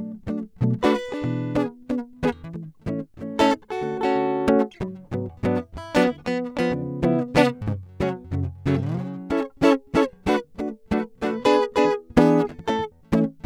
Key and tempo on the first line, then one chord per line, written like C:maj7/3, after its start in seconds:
F# minor, 187 BPM
0.00 B:min7
1.28 E:7/5
2.57 A:maj(#11)
3.85 D:maj7
5.13 G#:hdim7(b6)
6.42 C#:7(b9,#9,*5)/b3
7.70 F#:min
10.27 B:min7/b7
11.55 E:7
12.83 A:maj/5